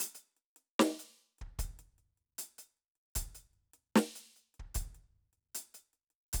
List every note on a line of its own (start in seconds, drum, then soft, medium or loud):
0.00 closed hi-hat loud
0.15 closed hi-hat soft
0.37 closed hi-hat soft
0.56 closed hi-hat soft
0.79 snare loud
0.99 closed hi-hat soft
1.38 kick soft
1.38 closed hi-hat soft
1.59 closed hi-hat medium
1.59 kick medium
1.79 closed hi-hat soft
1.98 closed hi-hat soft
2.17 closed hi-hat soft
2.38 closed hi-hat medium
2.58 closed hi-hat medium
2.77 closed hi-hat soft
2.95 closed hi-hat soft
3.15 closed hi-hat loud
3.15 kick medium
3.35 closed hi-hat soft
3.53 closed hi-hat soft
3.74 closed hi-hat soft
3.96 snare loud
4.15 closed hi-hat soft
4.36 closed hi-hat soft
4.54 closed hi-hat soft
4.59 kick soft
4.75 closed hi-hat medium
4.75 kick medium
4.95 closed hi-hat soft
5.33 closed hi-hat soft
5.55 closed hi-hat loud
5.74 closed hi-hat soft
5.93 closed hi-hat soft
6.10 closed hi-hat soft
6.33 closed hi-hat loud
6.33 kick medium